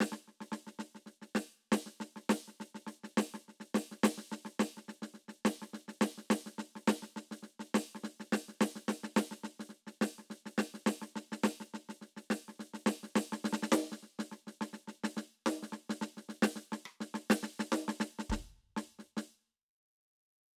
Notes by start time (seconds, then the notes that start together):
0.00 snare
0.12 snare
0.28 snare
0.40 snare
0.52 snare
0.67 snare
0.79 snare
0.95 snare
1.06 snare
1.22 snare
1.35 snare
1.72 snare
1.86 snare
2.00 snare
2.16 snare
2.29 snare
2.48 snare
2.60 snare
2.75 snare
2.87 snare
3.03 snare
3.17 snare
3.34 snare
3.48 snare
3.60 snare
3.74 snare
3.91 snare
4.03 snare
4.18 snare
4.32 snare
4.45 snare
4.59 snare
4.77 snare
4.88 snare
5.02 snare
5.14 snare
5.28 snare
5.45 snare
5.62 snare
5.73 snare
5.88 snare
6.01 snare
6.18 snare
6.30 snare
6.46 snare
6.58 snare
6.75 snare
6.88 snare
7.02 snare
7.16 snare
7.31 snare
7.43 snare
7.59 snare
7.74 snare
7.95 snare
8.03 snare
8.20 snare
8.32 snare
8.48 snare
8.61 snare
8.75 snare
8.88 snare
9.03 snare
9.16 snare
9.31 snare
9.43 snare
9.59 snare
9.69 snare
9.87 snare
10.01 snare
10.18 snare
10.30 snare
10.46 snare
10.58 snare
10.74 snare
10.86 snare
11.02 snare
11.16 snare
11.32 snare
11.43 snare
11.60 snare
11.74 snare
11.89 snare
12.01 snare
12.16 snare
12.30 snare
12.48 snare
12.59 snare
12.74 snare
12.86 snare
13.03 snare
13.15 snare
13.32 snare
13.44 snare
13.53 snare
13.63 snare
13.72 snare
13.92 snare
14.03 snare
14.19 snare
14.31 snare
14.47 snare
14.61 snare
14.73 snare
14.88 snare
15.04 snare
15.17 snare
15.46 snare
15.63 snare
15.72 snare
15.89 snare
16.01 snare
16.17 snare
16.29 snare
16.42 snare
16.56 snare
16.72 snare
16.85 cross-stick
17.00 snare
17.14 snare
17.30 snare
17.43 snare
17.59 snare
17.72 snare
17.88 snare
18.00 snare
18.19 snare
18.30 kick, snare
18.76 snare
18.99 snare
19.17 snare